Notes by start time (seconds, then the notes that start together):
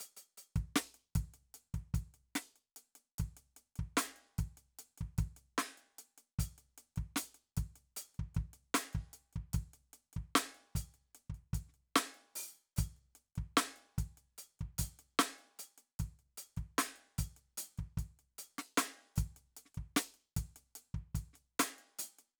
0.01 closed hi-hat
0.17 closed hi-hat
0.37 closed hi-hat
0.56 kick, closed hi-hat
0.76 snare, closed hi-hat
0.94 closed hi-hat
1.15 kick, closed hi-hat
1.34 closed hi-hat
1.54 closed hi-hat
1.74 kick, closed hi-hat
1.94 kick, closed hi-hat
2.14 closed hi-hat
2.35 snare, closed hi-hat
2.56 closed hi-hat
2.76 closed hi-hat
2.95 closed hi-hat
3.18 kick, closed hi-hat
3.37 closed hi-hat
3.56 closed hi-hat
3.76 kick, closed hi-hat
3.97 closed hi-hat, snare
4.16 closed hi-hat
4.38 kick, closed hi-hat
4.57 closed hi-hat
4.79 closed hi-hat
4.98 kick, closed hi-hat
5.18 kick, closed hi-hat
5.36 closed hi-hat
5.58 snare, closed hi-hat
5.77 closed hi-hat
5.98 closed hi-hat
6.18 closed hi-hat
6.39 closed hi-hat, kick
6.58 closed hi-hat
6.78 closed hi-hat
6.96 kick, closed hi-hat
7.16 closed hi-hat, snare
7.34 closed hi-hat
7.57 kick, closed hi-hat
7.76 closed hi-hat
7.96 closed hi-hat
8.14 closed hi-hat
8.19 kick
8.35 kick, snare, closed hi-hat
8.53 closed hi-hat
8.74 closed hi-hat, snare
8.93 kick, closed hi-hat
9.13 closed hi-hat
9.33 kick, closed hi-hat
9.53 kick, closed hi-hat
9.73 closed hi-hat
9.93 closed hi-hat
10.13 kick, closed hi-hat
10.35 closed hi-hat, snare
10.54 closed hi-hat
10.75 closed hi-hat, kick
10.94 closed hi-hat
11.15 closed hi-hat
11.29 kick
11.34 closed hi-hat
11.53 kick, closed hi-hat
11.69 snare
11.74 closed hi-hat
11.96 closed hi-hat, snare
12.14 closed hi-hat
12.35 open hi-hat
12.76 closed hi-hat, kick, hi-hat pedal
12.96 closed hi-hat
13.15 closed hi-hat
13.35 kick, closed hi-hat
13.57 closed hi-hat, snare
13.76 closed hi-hat
13.98 kick, closed hi-hat
14.17 closed hi-hat
14.38 closed hi-hat
14.59 kick, closed hi-hat
14.78 closed hi-hat, kick
14.99 closed hi-hat
15.19 closed hi-hat, snare
15.38 closed hi-hat
15.59 closed hi-hat
15.78 closed hi-hat
15.99 kick, closed hi-hat
16.19 closed hi-hat
16.37 closed hi-hat
16.57 kick, closed hi-hat
16.78 closed hi-hat, snare
16.96 closed hi-hat
17.18 closed hi-hat, kick
17.36 closed hi-hat
17.57 closed hi-hat
17.78 kick, closed hi-hat
17.97 kick, closed hi-hat
18.19 closed hi-hat
18.38 closed hi-hat
18.58 snare, closed hi-hat
18.77 closed hi-hat, snare
19.16 kick, closed hi-hat, hi-hat pedal
19.36 closed hi-hat
19.57 closed hi-hat
19.65 snare
19.74 kick, closed hi-hat
19.96 closed hi-hat, snare
20.14 closed hi-hat
20.36 kick, closed hi-hat
20.56 closed hi-hat
20.75 closed hi-hat
20.94 kick, closed hi-hat
21.15 kick, closed hi-hat
21.33 snare, closed hi-hat
21.59 closed hi-hat, snare
21.78 closed hi-hat
21.99 closed hi-hat
22.19 closed hi-hat